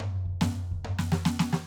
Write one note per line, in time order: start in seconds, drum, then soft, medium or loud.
0.01 floor tom loud
0.26 kick soft
0.42 snare loud
0.42 floor tom loud
0.72 kick medium
0.85 floor tom loud
0.99 snare loud
1.13 snare loud
1.26 snare loud
1.40 snare loud
1.53 snare loud